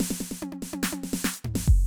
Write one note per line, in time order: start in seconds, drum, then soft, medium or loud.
0.01 snare loud
0.10 snare loud
0.20 snare medium
0.31 snare medium
0.42 high tom loud
0.52 high tom medium
0.62 snare medium
0.73 high tom loud
0.83 snare loud
0.92 high tom loud
1.03 snare medium
1.13 snare loud
1.24 snare loud
1.34 closed hi-hat loud
1.44 floor tom loud
1.54 kick soft
1.54 snare loud
1.67 kick loud
1.67 crash loud